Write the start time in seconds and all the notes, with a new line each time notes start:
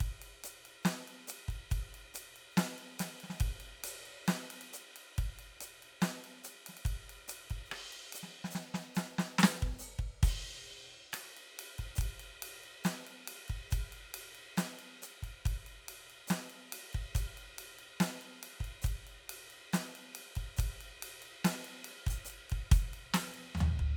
0.01 kick, hi-hat pedal, ride
0.22 ride
0.44 hi-hat pedal, ride
0.66 ride
0.83 snare, hi-hat pedal, ride
1.08 ride
1.28 hi-hat pedal, ride
1.49 kick, ride
1.71 kick, hi-hat pedal, ride
1.95 ride
2.15 hi-hat pedal, ride
2.37 ride
2.52 hi-hat pedal
2.58 snare, ride
2.79 ride
3.00 snare, hi-hat pedal, ride
3.21 snare, ride
3.30 snare
3.33 snare
3.39 kick, hi-hat pedal, ride
3.61 ride
3.84 hi-hat pedal, ride
4.06 ride
4.26 snare, hi-hat pedal, ride
4.51 ride
4.62 ride
4.74 hi-hat pedal, ride
4.97 ride
5.16 kick, hi-hat pedal, ride
5.37 hi-hat pedal, ride
5.61 hi-hat pedal, ride
5.83 ride
6.02 snare, hi-hat pedal, ride
6.25 ride
6.44 hi-hat pedal, ride
6.67 snare, ride
6.78 ride
6.85 kick, hi-hat pedal, ride
7.10 ride
7.29 hi-hat pedal, ride
7.51 kick, ride
7.67 hi-hat pedal
7.72 cross-stick, ride
7.93 ride
8.13 hi-hat pedal, ride
8.23 snare
8.45 snare
8.51 hi-hat pedal
8.55 snare
8.75 snare
8.96 snare, hi-hat pedal
9.19 snare
9.39 snare
9.44 snare
9.63 kick
9.79 hi-hat pedal
9.99 kick
10.23 open hi-hat, kick, ride
11.13 cross-stick, hi-hat pedal, ride
11.37 ride
11.60 ride
11.79 kick, ride
11.96 kick, hi-hat pedal
12.02 ride
12.20 ride
12.43 ride
12.64 ride
12.85 snare, hi-hat pedal, ride
13.07 ride
13.28 ride
13.49 kick, ride
13.71 kick, hi-hat pedal, ride
13.93 ride
14.15 ride
14.35 ride
14.58 snare, hi-hat pedal, ride
14.79 ride
15.03 hi-hat pedal, ride
15.23 kick, ride
15.46 kick, hi-hat pedal, ride
15.67 ride
15.89 ride
16.11 ride
16.28 snare, hi-hat pedal, ride
16.50 ride
16.73 ride
16.94 kick, ride
17.16 kick, hi-hat pedal, ride
17.38 ride
17.59 ride
17.79 ride
18.01 snare, hi-hat pedal, ride
18.22 ride
18.44 ride
18.61 kick
18.65 ride
18.82 kick, hi-hat pedal
18.87 ride
19.07 ride
19.30 ride
19.51 ride
19.73 snare, hi-hat pedal, ride
19.96 ride
20.14 hi-hat pedal, ride
20.36 kick, ride
20.57 kick, hi-hat pedal, ride
20.81 ride
21.03 ride
21.23 ride
21.45 snare, hi-hat pedal, ride
21.65 ride
21.85 ride
22.07 open hi-hat, kick, ride
22.25 hi-hat pedal
22.31 ride
22.50 kick, ride
22.72 open hi-hat, kick, ride
22.94 ride
23.14 snare, ride
23.35 ride
23.55 floor tom, hi-hat pedal
23.61 floor tom
23.80 kick